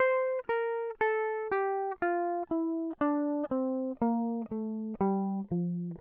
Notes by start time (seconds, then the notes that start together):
0.00 C5
0.49 A#4
1.01 A4
1.52 G4
2.02 F4
2.51 E4
3.01 D4
3.51 C4
4.02 A#3
4.52 A3
5.01 G3
5.52 F3